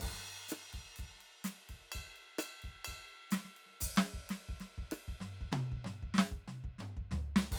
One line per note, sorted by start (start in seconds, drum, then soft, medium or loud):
0.01 kick soft
0.01 crash medium
0.10 kick soft
0.10 snare soft
0.18 snare soft
0.23 snare soft
0.48 cross-stick medium
0.48 hi-hat pedal medium
0.48 ride medium
0.73 kick soft
0.73 ride soft
0.79 kick soft
0.96 kick soft
0.96 hi-hat pedal soft
0.96 ride medium
1.04 kick soft
1.15 snare soft
1.18 snare soft
1.18 ride soft
1.44 snare medium
1.44 hi-hat pedal medium
1.44 ride medium
1.69 kick soft
1.69 ride medium
1.75 kick soft
1.92 kick soft
1.92 hi-hat pedal soft
1.92 ride bell loud
2.00 kick soft
2.16 ride soft
2.38 cross-stick medium
2.38 hi-hat pedal medium
2.38 ride bell loud
2.62 kick soft
2.62 ride soft
2.69 kick soft
2.85 kick soft
2.85 hi-hat pedal soft
2.85 ride bell loud
2.93 kick soft
3.09 ride soft
3.31 snare loud
3.31 hi-hat pedal medium
3.31 ride medium
3.44 snare soft
3.56 ride soft
3.66 snare soft
3.69 snare soft
3.80 kick soft
3.80 hi-hat pedal loud
3.88 kick soft
3.96 snare loud
3.96 ride medium
4.13 kick soft
4.19 kick soft
4.29 snare medium
4.29 ride medium
4.49 kick soft
4.60 snare soft
4.60 ride soft
4.78 kick soft
4.91 cross-stick medium
4.91 ride medium
5.08 kick soft
5.20 snare medium
5.20 mid tom medium
5.41 kick soft
5.52 snare medium
5.52 high tom loud
5.72 kick soft
5.84 snare medium
5.84 mid tom medium
6.02 kick soft
6.08 kick soft
6.14 snare medium
6.18 snare loud
6.31 kick soft
6.48 snare soft
6.48 high tom medium
6.64 kick soft
6.78 snare soft
6.78 mid tom medium
6.97 kick soft
7.11 snare medium
7.11 floor tom medium
7.36 snare loud
7.51 kick medium
7.51 crash medium